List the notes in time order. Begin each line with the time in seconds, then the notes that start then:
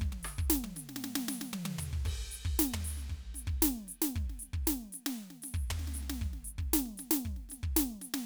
0.01 kick
0.12 high tom
0.23 cross-stick, hi-hat pedal
0.38 kick
0.48 snare, hi-hat pedal
0.64 high tom
0.76 snare, hi-hat pedal
0.89 snare
0.96 snare
1.02 snare, hi-hat pedal
1.15 snare
1.28 snare, hi-hat pedal
1.41 snare
1.52 hi-hat pedal, high tom
1.65 high tom
1.78 floor tom, hi-hat pedal
1.93 kick
2.05 kick, hi-hat pedal, crash
2.31 hi-hat pedal
2.45 kick
2.59 snare
2.73 floor tom
2.84 snare, hi-hat pedal
2.97 snare
3.09 kick, snare
3.34 snare, hi-hat pedal
3.47 kick, snare
3.60 snare, hi-hat pedal
3.75 snare
3.87 snare, hi-hat pedal
4.02 snare
4.15 kick, snare
4.29 snare
4.39 snare, hi-hat pedal
4.53 kick, snare
4.64 snare, hi-hat pedal
4.81 snare
4.92 snare, hi-hat pedal
5.06 snare
5.16 snare, hi-hat pedal
5.30 snare
5.42 snare, hi-hat pedal
5.54 kick
5.67 floor tom, hi-hat pedal
5.79 snare
5.87 snare
5.94 snare, hi-hat pedal
6.03 snare
6.09 snare
6.21 kick, snare
6.33 snare
6.44 snare, hi-hat pedal
6.58 kick, snare
6.73 snare
6.85 snare
6.97 snare, hi-hat pedal
7.11 snare
7.25 kick, snare
7.36 snare
7.49 snare, hi-hat pedal
7.51 snare
7.63 kick
7.75 snare, hi-hat pedal
7.89 snare
8.01 snare, hi-hat pedal
8.14 snare